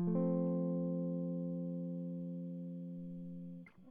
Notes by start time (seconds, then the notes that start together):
0.00 F3
0.08 A3
0.16 C4